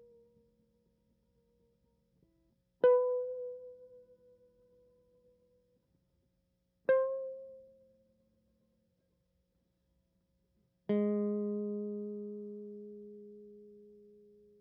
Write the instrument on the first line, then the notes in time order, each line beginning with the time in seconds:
electric guitar
2.84 B4
6.90 C5
10.91 G#3